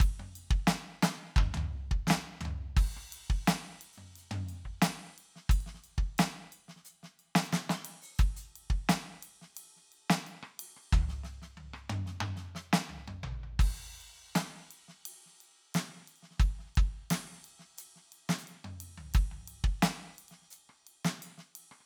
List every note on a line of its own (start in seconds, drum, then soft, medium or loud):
0.01 kick loud
0.01 ride medium
0.20 high tom medium
0.36 ride bell soft
0.51 kick loud
0.68 snare loud
0.68 ride bell soft
1.03 snare loud
1.03 ride bell medium
1.37 kick loud
1.37 mid tom medium
1.37 high tom loud
1.55 mid tom loud
1.55 high tom medium
1.92 kick loud
2.08 snare loud
2.11 snare loud
2.42 mid tom loud
2.46 high tom medium
2.78 kick loud
2.78 crash medium
2.97 cross-stick soft
3.13 ride medium
3.31 kick loud
3.48 snare loud
3.48 ride medium
3.82 ride medium
3.94 hi-hat pedal soft
3.98 high tom medium
4.16 hi-hat pedal soft
4.16 ride soft
4.32 high tom loud
4.50 ride bell soft
4.66 kick soft
4.83 snare loud
4.83 ride loud
5.19 ride soft
5.37 snare soft
5.50 kick loud
5.50 ride bell medium
5.61 ride soft
5.67 snare soft
5.75 snare soft
5.85 ride bell soft
5.99 kick medium
6.19 snare loud
6.19 ride bell medium
6.53 ride bell soft
6.69 snare soft
6.77 snare soft
6.86 hi-hat pedal medium
6.86 ride bell soft
7.04 snare soft
7.20 ride bell soft
7.36 snare loud
7.44 hi-hat pedal medium
7.54 snare loud
7.70 snare medium
7.86 ride medium
8.03 open hi-hat medium
8.20 kick loud
8.20 hi-hat pedal soft
8.20 ride medium
8.37 closed hi-hat medium
8.57 ride medium
8.71 kick loud
8.90 snare loud
8.90 ride medium
9.24 ride medium
9.42 snare soft
9.56 hi-hat pedal soft
9.56 ride medium
9.77 snare soft
9.93 ride soft
10.11 snare loud
10.28 ride soft
10.44 cross-stick medium
10.60 ride loud
10.77 cross-stick soft
10.93 kick loud
10.93 mid tom loud
11.09 snare soft
11.24 snare soft
11.43 snare soft
11.58 mid tom medium
11.74 cross-stick medium
11.90 high tom loud
12.07 snare soft
12.21 high tom loud
12.37 snare soft
12.56 snare medium
12.74 snare loud
12.90 mid tom medium
13.09 high tom medium
13.24 floor tom loud
13.44 floor tom soft
13.60 kick loud
13.60 crash medium
13.81 floor tom soft
14.01 ride bell soft
14.36 snare loud
14.36 ride medium
14.72 ride medium
14.89 snare soft
15.06 ride loud
15.27 snare soft
15.33 snare soft
15.41 ride soft
15.75 snare loud
15.75 ride medium
16.08 ride soft
16.17 ride soft
16.23 snare soft
16.31 snare soft
16.38 kick loud
16.38 snare soft
16.38 ride soft
16.60 snare soft
16.66 snare soft
16.76 kick loud
16.76 ride soft
17.11 snare loud
17.11 ride loud
17.16 hi-hat pedal soft
17.45 ride soft
17.60 snare soft
17.79 hi-hat pedal medium
17.79 ride medium
17.96 snare soft
18.13 ride soft
18.30 snare loud
18.39 hi-hat pedal medium
18.48 ride soft
18.65 high tom medium
18.81 ride medium
18.98 mid tom medium
19.15 kick loud
19.15 ride medium
19.32 mid tom soft
19.49 ride medium
19.65 kick loud
19.83 snare loud
19.83 ride medium
19.94 snare soft
20.15 hi-hat pedal soft
20.19 ride medium
20.29 snare soft
20.29 ride soft
20.39 cross-stick soft
20.39 snare soft
20.51 hi-hat pedal medium
20.51 ride soft
20.70 cross-stick soft
20.88 ride soft
21.06 snare loud
21.23 ride bell medium
21.38 snare soft
21.56 ride medium
21.72 cross-stick soft
21.81 cross-stick soft